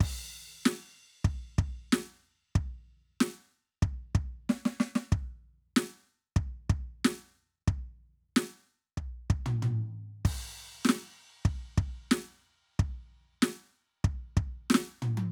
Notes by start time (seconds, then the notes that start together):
0.01 kick, crash
0.66 snare
1.25 kick
1.59 kick
1.93 snare
2.56 kick
3.21 snare
3.83 kick
4.15 kick
4.50 snare
4.66 snare
4.81 snare
4.96 snare
5.13 kick
5.77 snare
6.37 kick
6.70 kick
7.05 snare
7.68 kick
8.37 snare
8.98 kick
9.30 kick
9.47 floor tom
9.63 floor tom
10.26 kick, crash
10.85 snare
10.89 snare
11.46 kick
11.78 kick
12.12 snare
12.80 kick
13.43 snare
14.05 kick
14.37 kick
14.71 snare
14.75 snare
15.03 floor tom
15.18 high tom